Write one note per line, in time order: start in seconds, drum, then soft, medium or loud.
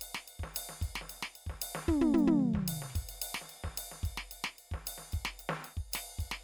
0.01 hi-hat pedal medium
0.01 ride bell medium
0.14 snare medium
0.27 ride medium
0.39 kick soft
0.43 snare soft
0.54 hi-hat pedal medium
0.54 ride bell loud
0.69 snare soft
0.81 kick soft
0.81 ride medium
0.88 kick soft
0.95 snare medium
1.01 snare soft
1.09 hi-hat pedal medium
1.09 ride bell medium
1.22 snare loud
1.35 ride medium
1.46 kick soft
1.46 snare soft
1.51 kick soft
1.61 hi-hat pedal medium
1.61 ride loud
1.75 snare medium
1.87 kick soft
1.87 floor tom loud
1.94 kick soft
2.00 floor tom loud
2.13 floor tom loud
2.17 hi-hat pedal medium
2.27 floor tom loud
2.38 floor tom soft
2.53 kick soft
2.53 snare soft
2.68 hi-hat pedal medium
2.68 ride loud
2.82 snare soft
2.90 snare soft
2.95 kick soft
2.95 ride medium
3.02 kick soft
3.09 snare soft
3.09 ride medium
3.13 snare soft
3.21 hi-hat pedal medium
3.21 ride bell loud
3.34 snare loud
3.41 snare soft
3.49 ride medium
3.64 kick soft
3.64 snare soft
3.76 hi-hat pedal medium
3.76 ride bell loud
3.91 snare soft
4.03 kick medium
4.03 ride medium
4.10 kick soft
4.17 snare medium
4.31 hi-hat pedal medium
4.31 ride bell medium
4.44 snare loud
4.58 ride soft
4.71 kick soft
4.71 snare soft
4.85 hi-hat pedal medium
4.85 ride bell loud
4.98 snare soft
5.12 kick soft
5.12 ride medium
5.20 kick soft
5.25 snare loud
5.39 hi-hat pedal medium
5.39 ride bell medium
5.49 snare medium
5.64 ride medium
5.77 kick soft
5.92 snare medium
5.92 hi-hat pedal medium
5.92 ride bell loud
6.19 kick soft
6.19 ride soft
6.24 kick soft
6.31 snare loud